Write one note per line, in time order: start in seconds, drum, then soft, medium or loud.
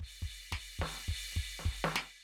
0.00 kick soft
0.00 crash medium
0.22 kick soft
0.22 crash medium
0.52 kick soft
0.52 snare medium
0.52 crash medium
0.79 kick soft
0.79 snare medium
0.79 crash medium
1.08 kick soft
1.08 crash medium
1.32 kick soft
1.32 snare soft
1.38 crash medium
1.59 snare soft
1.65 kick medium
1.65 crash medium
1.84 snare medium
1.95 snare loud